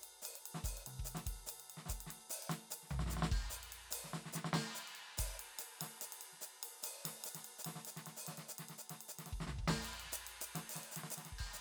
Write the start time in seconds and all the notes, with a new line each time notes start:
0.01 hi-hat pedal, ride
0.22 hi-hat pedal, ride
0.36 ride
0.41 hi-hat pedal
0.46 ride
0.55 snare
0.64 kick, hi-hat pedal, ride
0.77 ride
0.83 hi-hat pedal, high tom, ride
0.99 kick
1.05 hi-hat pedal, ride
1.15 snare, ride
1.24 kick, hi-hat pedal, ride
1.47 hi-hat pedal, ride
1.60 ride
1.70 ride
1.77 snare
1.86 kick, snare, hi-hat pedal
1.90 ride
2.01 ride
2.07 snare, hi-hat pedal, ride
2.16 snare
2.30 hi-hat pedal, ride
2.43 ride
2.49 snare, hi-hat pedal, ride
2.71 hi-hat pedal, ride
2.83 snare
2.90 floor tom, hi-hat pedal
2.99 snare
3.06 snare, hi-hat pedal
3.11 snare
3.17 snare
3.22 snare
3.28 kick, hi-hat pedal
3.32 ride
3.50 hi-hat pedal, ride
3.63 ride
3.70 hi-hat pedal, ride
3.91 hi-hat pedal, ride
4.04 snare
4.13 snare
4.26 snare
4.33 snare, hi-hat pedal
4.45 snare
4.53 snare, hi-hat pedal, ride
4.75 hi-hat pedal, ride
4.88 ride
4.95 ride
5.18 kick, hi-hat pedal, ride
5.36 hi-hat pedal, ride
5.59 hi-hat pedal, ride
5.78 snare, hi-hat pedal, ride
6.01 hi-hat pedal, ride
6.12 ride
6.21 ride
6.33 snare
6.41 hi-hat pedal, ride
6.61 hi-hat pedal, ride
6.83 hi-hat pedal, ride
7.05 snare, ride
7.24 hi-hat pedal, ride
7.35 snare, ride
7.45 ride
7.59 hi-hat pedal
7.65 snare, ride
7.76 snare
7.85 hi-hat pedal, ride
7.97 snare, ride
8.06 snare, ride
8.17 hi-hat pedal
8.27 snare, ride
8.38 snare, ride
8.49 hi-hat pedal
8.58 snare, ride
8.69 snare, ride
8.78 hi-hat pedal
8.90 snare, ride
9.01 ride
9.09 hi-hat pedal
9.19 snare, ride
9.26 snare, ride
9.33 kick
9.40 snare, floor tom
9.47 snare, floor tom
9.59 kick
9.68 snare, ride
9.82 hi-hat pedal, ride
9.93 ride
10.00 ride
10.05 snare
10.12 hi-hat pedal, ride
10.26 hi-hat pedal, ride
10.41 hi-hat pedal, ride
10.55 snare, hi-hat pedal, ride
10.70 hi-hat pedal, ride
10.76 snare, ride
10.84 ride
10.92 hi-hat pedal
10.96 snare, ride
11.04 snare
11.11 hi-hat pedal, ride
11.17 snare, ride
11.25 snare, ride
11.32 kick
11.39 kick, hi-hat pedal, ride
11.46 snare
11.53 snare, hi-hat pedal